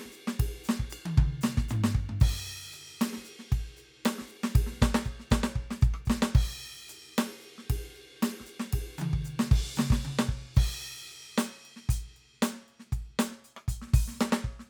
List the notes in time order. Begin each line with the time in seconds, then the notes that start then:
0.01 snare
0.04 kick, snare
0.06 snare
0.09 snare, hi-hat pedal
0.15 ride
0.28 snare
0.40 kick, ride
0.64 hi-hat pedal, ride bell
0.69 snare
0.80 kick, snare
0.90 hi-hat pedal, ride bell
1.06 high tom
1.18 kick, mid tom
1.42 snare, hi-hat pedal, ride bell
1.57 kick, snare
1.69 floor tom, hi-hat pedal
1.84 snare
1.95 kick
2.10 floor tom
2.21 kick, hi-hat pedal, crash
2.72 hi-hat pedal, ride
3.01 snare, ride
3.13 snare
3.17 kick, snare
3.25 hi-hat pedal, ride
3.39 snare
3.52 kick, ride bell
3.77 hi-hat pedal, ride
4.06 snare, ride
4.19 kick, snare
4.21 snare
4.25 snare, hi-hat pedal
4.31 ride
4.44 snare
4.55 kick, hi-hat pedal, ride
4.67 snare
4.72 snare
4.77 snare
4.82 kick, snare, hi-hat pedal
4.95 snare
5.05 kick, hi-hat pedal
5.20 snare
5.31 kick, snare, hi-hat pedal
5.44 snare
5.56 kick, snare
5.71 snare
5.82 kick, hi-hat pedal
5.94 cross-stick
6.06 kick, hi-hat pedal
6.10 snare
6.22 snare
6.35 kick, crash
6.89 hi-hat pedal, ride
7.18 snare, ride
7.41 hi-hat pedal, ride
7.58 snare
7.70 kick, ride
7.94 hi-hat pedal, ride
8.23 snare, ride
8.40 kick, snare
8.46 hi-hat pedal, ride
8.60 snare
8.73 kick, ride
8.98 hi-hat pedal, mid tom, high tom
9.13 kick
9.25 hi-hat pedal, ride, floor tom
9.40 snare
9.52 kick, ride
9.76 snare, hi-hat pedal, mid tom
9.91 kick, snare
10.03 hi-hat pedal, mid tom
10.19 snare
10.27 kick, hi-hat pedal
10.55 kick, hi-hat pedal, crash
11.38 closed hi-hat, snare
11.53 snare
11.56 snare
11.66 closed hi-hat
11.77 snare
11.89 closed hi-hat, kick
12.17 closed hi-hat
12.43 closed hi-hat, snare
12.54 snare
12.56 snare
12.68 closed hi-hat
12.80 snare
12.93 kick, closed hi-hat
13.19 closed hi-hat, snare
13.31 snare
13.45 closed hi-hat
13.57 cross-stick
13.68 closed hi-hat, kick
13.82 snare
13.87 snare
13.91 open hi-hat, kick, snare
14.08 snare
14.11 snare
14.14 snare
14.16 snare
14.20 snare, hi-hat pedal
14.33 snare
14.45 kick
14.60 snare